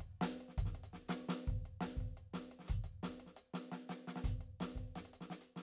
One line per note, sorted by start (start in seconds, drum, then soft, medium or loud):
0.01 closed hi-hat soft
0.22 closed hi-hat loud
0.22 snare medium
0.41 closed hi-hat soft
0.49 snare soft
0.58 kick soft
0.58 closed hi-hat medium
0.66 snare soft
0.75 closed hi-hat soft
0.84 closed hi-hat medium
0.94 snare soft
1.09 closed hi-hat medium
1.09 snare medium
1.29 open hi-hat loud
1.29 snare medium
1.46 kick soft
1.46 hi-hat pedal soft
1.50 closed hi-hat soft
1.66 closed hi-hat soft
1.81 closed hi-hat medium
1.81 snare medium
1.97 kick soft
1.97 closed hi-hat soft
2.18 closed hi-hat soft
2.34 snare medium
2.34 closed hi-hat medium
2.52 closed hi-hat soft
2.60 snare soft
2.64 snare soft
2.69 closed hi-hat medium
2.69 kick soft
2.85 closed hi-hat medium
3.04 snare medium
3.04 closed hi-hat medium
3.20 closed hi-hat soft
3.27 snare soft
3.37 closed hi-hat medium
3.54 snare medium
3.54 closed hi-hat medium
3.72 snare soft
3.72 closed hi-hat soft
3.90 snare soft
3.90 closed hi-hat medium
4.08 snare soft
4.08 closed hi-hat soft
4.16 snare soft
4.25 closed hi-hat medium
4.25 kick soft
4.41 closed hi-hat soft
4.61 snare medium
4.61 closed hi-hat medium
4.76 kick soft
4.76 closed hi-hat soft
4.96 snare soft
4.96 closed hi-hat medium
5.06 closed hi-hat soft
5.14 closed hi-hat medium
5.21 snare soft
5.31 snare soft
5.31 closed hi-hat medium
5.41 closed hi-hat soft
5.57 snare soft